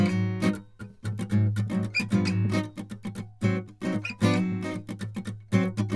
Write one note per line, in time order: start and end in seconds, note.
0.01 0.12 G2
0.01 0.11 F3
0.01 0.09 B3
0.11 0.54 G#2
0.11 0.46 F#3
0.11 0.22 C4
0.43 0.61 F#3
0.43 0.58 C4
0.43 0.65 D#4
1.31 1.52 G#2
1.35 1.54 F#3
1.71 1.91 F#3
1.71 1.90 C4
1.71 1.95 D#4
1.76 1.90 G#2
2.13 2.31 G2
2.13 2.24 F3
2.13 2.28 B3
2.27 2.57 F#3
2.27 2.55 C4
2.32 2.63 G#2
2.55 2.65 F#3
2.55 2.65 C4
2.55 2.74 D#4
3.42 3.64 G#2
3.42 3.65 F#3
3.42 3.65 C4
3.84 4.02 F#3
3.84 4.01 C4
3.84 4.06 D#4
4.24 4.35 F3
4.24 4.34 B3
4.24 4.38 D4
4.34 4.67 F#3
4.34 4.66 C4
4.39 4.83 G#2
4.39 4.64 D#4
4.65 4.85 F#3
4.65 4.80 C4
4.65 4.85 D#4
5.54 5.71 G#2
5.54 5.74 F#3
5.54 5.71 C4